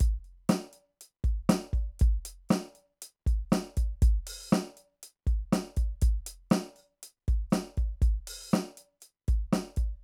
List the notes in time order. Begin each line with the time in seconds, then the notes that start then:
0.01 closed hi-hat, kick
0.25 closed hi-hat
0.50 closed hi-hat, snare
0.74 closed hi-hat
1.02 closed hi-hat
1.25 kick, closed hi-hat
1.50 closed hi-hat, snare
1.74 kick, closed hi-hat
2.00 kick, closed hi-hat
2.26 open hi-hat
2.50 snare, hi-hat pedal
2.76 closed hi-hat
3.03 closed hi-hat
3.27 kick, closed hi-hat
3.51 closed hi-hat, snare, hi-hat pedal
3.78 closed hi-hat, kick
4.03 closed hi-hat, kick
4.28 open hi-hat
4.51 snare, hi-hat pedal
4.78 closed hi-hat
5.04 closed hi-hat
5.28 kick, closed hi-hat
5.53 closed hi-hat, snare
5.77 closed hi-hat, kick
6.02 closed hi-hat, kick
6.27 closed hi-hat
6.51 snare, hi-hat pedal
6.76 hi-hat pedal, open hi-hat
7.04 closed hi-hat
7.29 kick, closed hi-hat
7.51 closed hi-hat, snare, hi-hat pedal
7.78 kick, closed hi-hat
8.03 closed hi-hat, kick
8.28 open hi-hat
8.53 snare, hi-hat pedal
8.78 closed hi-hat
9.01 closed hi-hat, hi-hat pedal
9.29 closed hi-hat, kick
9.54 closed hi-hat, snare
9.77 closed hi-hat, kick